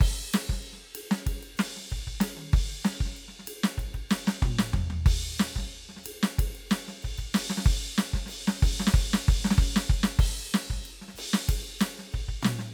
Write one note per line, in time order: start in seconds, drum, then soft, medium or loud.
0.01 kick loud
0.01 crash loud
0.34 snare loud
0.34 hi-hat pedal medium
0.34 ride loud
0.50 kick medium
0.50 snare soft
0.63 hi-hat pedal soft
0.63 ride soft
0.73 snare soft
0.77 snare soft
0.83 snare soft
0.94 hi-hat pedal soft
0.94 ride loud
1.03 kick soft
1.11 snare loud
1.27 kick medium
1.27 ride loud
1.43 ride medium
1.55 kick soft
1.55 hi-hat pedal medium
1.59 snare loud
1.59 ride loud
1.77 snare soft
1.91 kick medium
1.91 ride medium
2.07 kick medium
2.21 snare loud
2.21 hi-hat pedal medium
2.21 ride loud
2.37 high tom medium
2.53 kick loud
2.53 ride loud
2.85 snare loud
2.85 hi-hat pedal medium
2.85 ride medium
3.01 kick medium
3.06 snare soft
3.17 ride soft
3.28 snare soft
3.39 snare soft
3.44 kick soft
3.44 snare soft
3.44 hi-hat pedal medium
3.48 ride loud
3.64 snare loud
3.78 kick medium
3.78 ride medium
3.95 kick medium
3.95 ride soft
4.10 snare loud
4.10 hi-hat pedal medium
4.10 ride medium
4.28 snare loud
4.43 kick loud
4.43 mid tom loud
4.59 snare loud
4.74 kick medium
4.74 floor tom loud
4.90 floor tom loud
5.06 kick loud
5.06 ride loud
5.38 snare loud
5.38 hi-hat pedal medium
5.38 ride medium
5.56 kick medium
5.56 snare medium
5.69 hi-hat pedal soft
5.89 snare soft
5.97 snare soft
6.04 kick soft
6.04 hi-hat pedal medium
6.04 ride loud
6.23 snare loud
6.39 kick loud
6.39 ride loud
6.55 ride medium
6.70 kick soft
6.70 snare loud
6.70 hi-hat pedal medium
6.70 ride medium
6.88 snare medium
7.03 kick medium
7.03 ride medium
7.18 kick medium
7.18 ride bell medium
7.34 snare loud
7.34 hi-hat pedal medium
7.34 ride loud
7.50 snare medium
7.58 snare medium
7.65 kick loud
7.65 ride loud
7.74 hi-hat pedal soft
7.98 snare loud
7.98 hi-hat pedal medium
8.14 kick medium
8.14 snare medium
8.26 snare medium
8.26 hi-hat pedal medium
8.26 ride loud
8.48 snare loud
8.61 kick loud
8.61 hi-hat pedal medium
8.61 ride loud
8.80 snare medium
8.87 snare loud
8.94 kick loud
8.94 ride loud
9.14 snare loud
9.29 kick loud
9.29 ride loud
9.45 snare loud
9.51 snare loud
9.58 kick loud
9.58 ride loud
9.76 snare loud
9.90 kick loud
9.90 snare soft
10.04 snare loud
10.19 kick loud
10.19 crash loud
10.54 snare loud
10.54 hi-hat pedal medium
10.70 kick medium
10.70 snare soft
10.83 hi-hat pedal soft
10.83 ride medium
11.02 snare soft
11.09 snare soft
11.15 kick soft
11.15 hi-hat pedal medium
11.15 ride loud
11.34 snare loud
11.49 kick medium
11.49 ride loud
11.65 ride soft
11.79 kick soft
11.79 snare loud
11.79 hi-hat pedal medium
11.79 ride loud
11.99 snare soft
12.13 kick medium
12.13 ride medium
12.29 kick medium
12.43 snare loud
12.43 hi-hat pedal medium
12.43 mid tom loud
12.59 snare medium